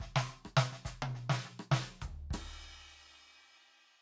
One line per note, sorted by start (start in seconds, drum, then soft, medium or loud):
0.01 kick soft
0.01 snare soft
0.08 kick soft
0.17 snare loud
0.28 snare soft
0.28 hi-hat pedal medium
0.46 kick soft
0.46 cross-stick medium
0.58 snare loud
0.73 snare soft
0.86 kick soft
0.86 snare medium
0.86 hi-hat pedal loud
0.95 kick soft
1.03 high tom loud
1.15 snare soft
1.30 snare loud
1.45 snare soft
1.60 cross-stick medium
1.72 kick soft
1.72 snare loud
1.78 kick soft
2.02 kick medium
2.02 hi-hat pedal medium
2.02 floor tom medium
2.10 kick soft
2.24 kick soft
2.31 kick medium
2.31 cross-stick medium
2.31 hi-hat pedal loud
2.31 crash medium
2.45 kick soft